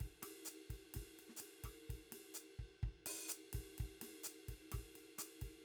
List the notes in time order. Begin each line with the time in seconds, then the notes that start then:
0.01 kick, ride
0.06 kick
0.23 cross-stick, ride
0.46 hi-hat pedal, ride
0.70 kick, ride
0.94 kick, snare, ride
1.20 ride
1.30 snare
1.37 hi-hat pedal, ride
1.64 kick, cross-stick, ride
1.90 kick, ride
1.95 kick
2.12 snare, ride
2.35 hi-hat pedal
2.60 kick
2.83 kick, ride
3.06 open hi-hat, ride
3.29 hi-hat pedal
3.54 kick, ride
3.60 kick
3.79 kick, ride
3.86 kick
4.02 snare, ride
4.24 hi-hat pedal, ride
4.49 kick, ride
4.72 kick, cross-stick, ride
4.80 kick
4.96 ride
5.19 cross-stick, hi-hat pedal, ride
5.42 kick, ride